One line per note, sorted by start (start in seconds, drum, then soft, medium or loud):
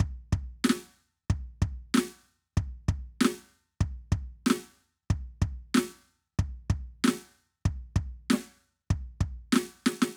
0.00 kick loud
0.33 kick loud
0.64 snare loud
0.69 snare loud
1.30 kick loud
1.62 kick loud
1.94 snare loud
1.97 snare loud
2.57 kick loud
2.88 kick loud
3.21 snare loud
3.25 snare loud
3.81 kick loud
4.12 kick loud
4.46 snare loud
4.50 snare loud
5.10 kick loud
5.42 kick loud
5.74 snare loud
5.77 snare loud
6.39 kick loud
6.70 kick loud
7.04 snare loud
7.08 snare loud
7.65 kick loud
7.96 kick loud
8.30 snare loud
8.33 snare loud
8.90 kick loud
9.21 kick loud
9.52 snare loud
9.56 snare loud
9.86 snare loud
10.02 snare loud